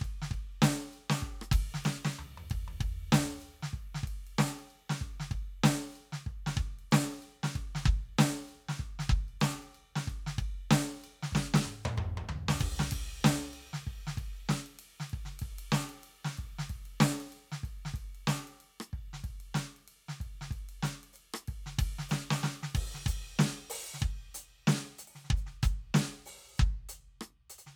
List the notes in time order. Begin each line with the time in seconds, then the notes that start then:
0.01 kick, ride
0.22 snare
0.31 kick, ride bell
0.62 snare, hi-hat pedal
0.93 ride bell
1.10 snare
1.22 kick
1.41 cross-stick
1.51 kick, ride
1.74 snare
1.84 snare, hi-hat pedal
2.05 snare
2.11 hi-hat pedal
2.19 floor tom
2.37 mid tom
2.50 kick, ride
2.68 mid tom
2.80 kick, ride
3.12 snare, hi-hat pedal
3.39 hi-hat pedal, ride bell
3.63 snare
3.73 kick
3.94 snare
4.03 kick
4.07 ride
4.27 ride
4.38 snare, hi-hat pedal
4.59 ride bell
4.70 ride bell
4.89 snare
5.01 kick, ride bell
5.20 snare
5.31 kick, ride bell
5.64 snare, hi-hat pedal
5.91 hi-hat pedal
5.95 ride bell
6.12 snare
6.26 kick
6.46 snare
6.57 kick, ride bell
6.79 ride
6.91 snare, hi-hat pedal
7.12 ride bell
7.22 ride bell
7.43 snare
7.55 kick, ride
7.75 snare
7.86 kick, ride bell
8.18 snare, hi-hat pedal
8.49 ride bell
8.69 snare
8.79 kick
8.99 snare
9.09 kick, ride bell
9.28 ride bell
9.41 snare, hi-hat pedal
9.62 ride bell
9.74 ride bell
9.96 snare
10.07 kick, ride
10.26 snare
10.38 kick, ride bell
10.71 snare, hi-hat pedal
11.04 ride bell
11.23 snare
11.32 kick, snare
11.54 snare
11.65 high tom
11.85 high tom
11.97 kick, mid tom
12.17 mid tom
12.29 floor tom
12.48 snare
12.60 kick, crash
12.79 snare
12.91 kick, ride
13.24 snare, hi-hat pedal
13.53 ride bell
13.73 snare
13.87 kick
14.07 snare
14.17 kick, ride
14.36 ride bell
14.49 snare, hi-hat pedal
14.66 ride
14.79 ride
15.00 snare
15.10 kick, ride
15.25 snare
15.39 kick, ride
15.59 ride
15.72 snare, hi-hat pedal
15.89 ride
16.03 ride
16.24 snare
16.38 kick, ride
16.59 snare
16.69 kick, ride
16.85 ride
17.00 snare, hi-hat pedal
17.20 ride
17.32 ride
17.52 snare
17.63 kick, ride
17.85 snare
17.94 kick, ride
18.15 ride
18.27 snare, hi-hat pedal
18.47 ride
18.60 ride
18.80 cross-stick
18.93 kick
19.13 snare
19.24 kick, ride
19.40 ride
19.54 snare, hi-hat pedal
19.76 ride
19.88 ride
20.08 snare
20.20 kick, ride
20.41 snare
20.51 kick, ride
20.69 ride
20.83 snare, hi-hat pedal
21.03 ride
21.13 hi-hat pedal, ride
21.34 cross-stick
21.48 kick, ride
21.66 snare
21.79 kick, ride
21.99 snare
22.09 snare, hi-hat pedal
22.30 snare
22.43 snare
22.63 snare
22.75 kick, crash
22.94 snare
23.06 closed hi-hat, kick
23.39 snare
23.70 open hi-hat
23.94 snare
24.02 kick
24.34 closed hi-hat
24.67 snare
24.76 snare
24.98 closed hi-hat
25.07 open hi-hat
25.15 snare
25.24 snare
25.30 kick
25.37 hi-hat pedal
25.46 snare
25.63 closed hi-hat, kick
25.94 snare
26.26 open hi-hat
26.58 kick, hi-hat pedal
26.89 closed hi-hat
27.21 cross-stick
27.50 closed hi-hat
27.58 closed hi-hat
27.66 snare